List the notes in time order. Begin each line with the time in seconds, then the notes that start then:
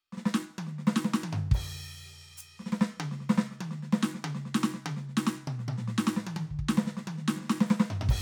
0.13 snare
0.18 snare
0.26 snare
0.35 snare
0.59 high tom
0.67 snare
0.79 snare
0.87 snare
0.96 snare
1.05 snare
1.14 snare
1.24 high tom
1.33 floor tom
1.52 kick, crash
2.38 hi-hat pedal
2.60 snare
2.66 snare
2.73 snare
2.81 snare
3.00 high tom
3.12 snare
3.21 snare
3.30 snare
3.38 snare
3.51 snare
3.61 high tom
3.71 snare
3.83 snare
3.93 snare
4.03 snare
4.15 snare
4.25 high tom
4.35 snare
4.46 snare
4.55 snare
4.64 snare
4.74 snare
4.86 high tom
4.97 snare
5.09 snare
5.17 snare
5.27 snare
5.48 mid tom
5.60 snare
5.69 mid tom
5.78 snare
5.88 snare
5.98 snare
6.07 snare
6.17 snare
6.27 high tom
6.37 high tom
6.51 kick
6.59 kick
6.69 snare
6.78 snare
6.87 snare
7.08 high tom
7.18 snare
7.28 snare
7.37 snare
7.41 snare
7.44 snare
7.50 snare
7.61 snare
7.67 snare, hi-hat pedal
7.80 snare
7.91 floor tom
8.02 floor tom
8.09 kick, crash